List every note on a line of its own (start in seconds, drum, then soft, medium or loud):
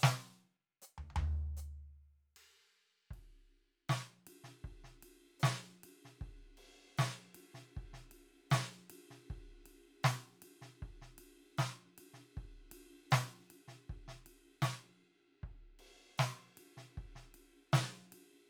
0.01 snare soft
0.01 hi-hat pedal medium
0.04 snare loud
0.82 hi-hat pedal medium
0.98 floor tom medium
1.11 floor tom soft
1.17 floor tom loud
1.57 hi-hat pedal medium
2.37 crash soft
3.11 kick soft
3.11 ride soft
3.89 snare loud
3.89 hi-hat pedal medium
4.27 ride medium
4.44 snare soft
4.65 kick soft
4.84 snare soft
4.91 snare soft
5.03 ride medium
5.40 snare loud
5.40 hi-hat pedal medium
5.84 ride medium
6.05 snare soft
6.22 kick soft
6.58 ride soft
6.98 snare loud
6.98 hi-hat pedal medium
7.35 ride medium
7.55 snare soft
7.77 kick soft
7.94 snare soft
8.12 ride soft
8.51 snare loud
8.51 hi-hat pedal medium
8.90 ride medium
9.11 snare soft
9.31 kick soft
9.66 ride soft
10.04 snare loud
10.04 hi-hat pedal medium
10.43 ride medium
10.62 snare soft
10.83 kick soft
11.02 snare soft
11.19 ride medium
11.58 snare loud
11.58 hi-hat pedal medium
11.99 ride medium
12.14 snare soft
12.37 kick soft
12.72 ride medium
13.11 snare loud
13.11 hi-hat pedal medium
13.51 ride soft
13.68 snare soft
13.90 kick soft
14.08 snare soft
14.27 ride soft
14.63 snare loud
14.63 hi-hat pedal medium
14.63 ride bell soft
15.44 kick soft
15.80 ride soft
16.18 snare medium
16.18 hi-hat pedal medium
16.35 snare soft
16.58 ride medium
16.78 snare soft
16.98 kick soft
17.16 snare soft
17.23 snare soft
17.35 ride soft
17.73 snare loud
17.73 hi-hat pedal medium
18.13 ride medium